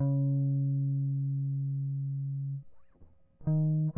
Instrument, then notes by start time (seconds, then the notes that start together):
electric guitar
0.02 C#3
3.49 D#3